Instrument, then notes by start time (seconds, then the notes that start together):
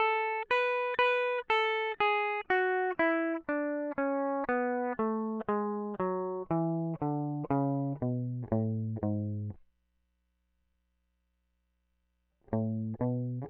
electric guitar
0.00 A4
0.51 B4
0.99 B4
1.51 A4
2.01 G#4
2.51 F#4
3.00 E4
3.49 D4
3.99 C#4
4.49 B3
5.00 A3
5.49 G#3
6.01 F#3
6.52 E3
7.03 D3
7.52 C#3
8.04 B2
8.54 A2
9.05 G#2
12.55 A2
13.03 B2